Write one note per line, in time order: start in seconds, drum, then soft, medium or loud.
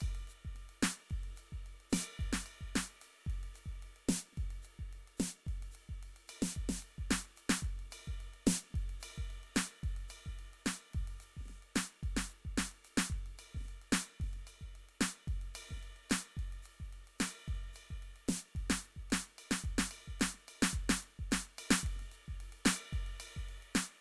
0.01 kick soft
0.01 ride bell medium
0.08 kick soft
0.15 ride medium
0.28 hi-hat pedal medium
0.28 ride soft
0.45 kick soft
0.55 snare soft
0.55 ride medium
0.69 ride medium
0.83 snare medium
0.83 hi-hat pedal medium
0.83 ride loud
1.10 kick soft
1.10 snare soft
1.10 ride soft
1.24 snare soft
1.24 ride soft
1.33 snare soft
1.33 hi-hat pedal soft
1.38 ride medium
1.53 kick soft
1.66 ride soft
1.81 ride soft
1.90 snare medium
1.90 hi-hat pedal medium
1.90 ride bell loud
2.20 kick soft
2.20 ride soft
2.25 kick soft
2.33 snare medium
2.44 hi-hat pedal medium
2.44 ride bell medium
2.61 kick soft
2.76 snare medium
2.76 ride medium
2.88 ride medium
3.01 hi-hat pedal soft
3.01 ride medium
3.27 kick soft
3.27 ride medium
3.43 ride medium
3.55 hi-hat pedal soft
3.55 ride medium
3.66 kick soft
3.83 ride medium
3.96 ride soft
4.09 snare medium
4.09 hi-hat pedal medium
4.09 ride medium
4.33 snare soft
4.38 kick soft
4.38 ride medium
4.44 kick soft
4.51 ride medium
4.62 hi-hat pedal soft
4.62 ride medium
4.79 kick soft
4.93 ride soft
5.08 ride soft
5.17 snare medium
5.17 hi-hat pedal medium
5.17 ride medium
5.47 kick soft
5.47 snare soft
5.47 ride soft
5.57 snare soft
5.61 snare soft
5.61 ride medium
5.71 hi-hat pedal medium
5.71 ride medium
5.89 kick soft
6.03 ride medium
6.17 ride medium
6.28 hi-hat pedal soft
6.28 ride bell medium
6.42 snare medium
6.56 kick soft
6.56 ride medium
6.69 snare medium
6.80 hi-hat pedal soft
6.80 ride medium
6.99 kick soft
7.11 snare medium
7.11 ride medium
7.25 ride medium
7.36 hi-hat pedal soft
7.36 ride medium
7.50 snare medium
7.63 kick soft
7.63 ride medium
7.77 snare soft
7.77 ride soft
7.81 snare soft
7.84 snare soft
7.86 snare soft
7.90 snare soft
7.90 hi-hat pedal medium
7.90 ride bell medium
8.08 kick soft
8.21 ride medium
8.34 ride soft
8.46 snare loud
8.46 hi-hat pedal medium
8.46 ride medium
8.71 kick soft
8.71 snare soft
8.76 snare soft
8.76 ride medium
8.84 snare soft
8.90 ride medium
9.00 hi-hat pedal medium
9.00 ride bell medium
9.18 kick soft
9.31 ride medium
9.44 ride soft
9.55 snare medium
9.55 hi-hat pedal medium
9.55 ride bell medium
9.84 kick soft
9.84 snare soft
9.84 ride medium
9.97 ride medium
10.09 hi-hat pedal medium
10.09 ride bell medium
10.26 kick soft
10.26 snare soft
10.29 snare soft
10.39 ride medium
10.54 ride soft
10.65 snare medium
10.65 hi-hat pedal soft
10.65 ride bell medium
10.91 kick soft
10.91 snare soft
10.91 ride medium
11.01 kick soft
11.08 ride medium
11.20 hi-hat pedal medium
11.20 ride medium
11.37 kick soft
11.37 snare soft
11.46 snare soft
11.46 ride soft
11.50 snare soft
11.63 ride soft
11.75 snare medium
11.75 hi-hat pedal medium
11.75 ride medium
12.03 kick soft
12.03 ride soft
12.17 snare medium
12.29 hi-hat pedal medium
12.29 ride medium
12.45 kick soft
12.58 snare medium
12.58 ride medium
12.72 ride medium
12.84 hi-hat pedal medium
12.84 ride medium
12.98 snare medium
13.10 kick soft
13.10 ride soft
13.16 kick soft
13.26 snare soft
13.26 ride soft
13.38 hi-hat pedal soft
13.38 ride bell medium
13.55 kick soft
13.55 snare soft
13.61 snare soft
13.65 snare soft
13.65 ride medium
13.82 ride soft
13.93 snare loud
13.93 hi-hat pedal soft
13.93 ride bell medium
14.20 kick soft
14.20 snare soft
14.20 ride medium
14.26 kick soft
14.32 snare soft
14.32 ride soft
14.36 snare soft
14.47 hi-hat pedal soft
14.47 ride bell medium
14.61 kick soft
14.76 ride soft
14.89 ride soft
15.01 snare medium
15.01 hi-hat pedal medium
15.01 ride bell medium
15.28 kick soft
15.28 snare soft
15.28 ride medium
15.34 kick soft
15.42 ride soft
15.54 hi-hat pedal medium
15.54 ride bell medium
15.69 kick soft
15.69 snare soft
15.72 snare soft
15.77 snare soft
15.83 ride medium
15.97 ride soft
16.10 snare medium
16.10 hi-hat pedal medium
16.10 ride bell medium
16.37 kick soft
16.37 snare soft
16.37 ride medium
16.53 ride soft
16.63 hi-hat pedal soft
16.63 ride medium
16.80 kick soft
16.93 ride soft
17.08 ride medium
17.19 snare medium
17.19 hi-hat pedal medium
17.19 ride bell medium
17.48 kick soft
17.48 ride soft
17.54 kick soft
17.73 hi-hat pedal soft
17.73 ride bell medium
17.91 kick soft
18.03 ride soft
18.16 ride soft
18.29 snare medium
18.29 hi-hat pedal medium
18.29 ride medium
18.56 kick soft
18.56 ride medium
18.61 kick soft
18.70 snare medium
18.82 hi-hat pedal medium
18.82 ride medium
18.97 kick soft
19.11 snare medium
19.11 ride medium
19.25 ride medium
19.39 hi-hat pedal soft
19.39 ride bell medium
19.51 snare medium
19.64 kick soft
19.64 ride medium
19.70 kick soft
19.79 snare medium
19.91 hi-hat pedal soft
19.91 ride bell medium
20.08 kick soft
20.20 snare medium
20.20 ride medium
20.34 snare soft
20.34 ride soft
20.48 hi-hat pedal soft
20.48 ride bell medium
20.63 snare loud
20.74 kick soft
20.74 ride medium
20.79 kick soft
20.90 snare medium
21.00 hi-hat pedal medium
21.00 ride medium
21.19 kick soft
21.32 snare medium
21.32 ride medium
21.45 ride medium
21.58 hi-hat pedal soft
21.58 ride bell medium
21.71 snare loud
21.84 kick soft
21.84 ride medium
21.96 snare soft
21.96 ride medium
22.01 snare soft
22.12 hi-hat pedal soft
22.12 ride medium
22.28 kick soft
22.33 kick soft
22.41 ride medium
22.53 ride medium
22.66 snare loud
22.66 hi-hat pedal soft
22.66 ride bell loud
22.93 kick soft
22.93 ride medium
23.07 ride medium
23.20 hi-hat pedal soft
23.20 ride bell medium
23.37 kick soft
23.49 ride medium
23.63 ride soft
23.74 snare medium
23.74 hi-hat pedal medium
23.74 ride medium